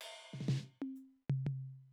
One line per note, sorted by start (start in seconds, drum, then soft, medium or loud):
0.01 ride medium
0.33 snare soft
0.40 snare soft
0.48 snare medium
0.82 high tom medium
0.96 hi-hat pedal soft
1.29 floor tom medium
1.46 floor tom medium